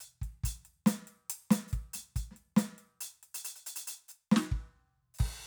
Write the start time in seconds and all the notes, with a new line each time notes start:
0.01 closed hi-hat
0.22 kick, closed hi-hat
0.44 closed hi-hat, kick
0.66 closed hi-hat
0.87 closed hi-hat, snare
1.08 closed hi-hat
1.30 closed hi-hat
1.51 open hi-hat, snare
1.69 hi-hat pedal
1.73 kick, closed hi-hat
1.94 closed hi-hat, snare
2.16 closed hi-hat, kick
2.32 snare
2.37 closed hi-hat
2.57 closed hi-hat, snare
2.79 closed hi-hat
3.01 closed hi-hat
3.15 closed hi-hat
3.23 closed hi-hat
3.35 closed hi-hat
3.45 closed hi-hat
3.56 closed hi-hat
3.67 closed hi-hat
3.76 closed hi-hat
3.88 closed hi-hat
4.09 hi-hat pedal
4.32 snare
4.37 snare
4.52 kick
5.15 hi-hat pedal
5.19 kick, crash
5.35 closed hi-hat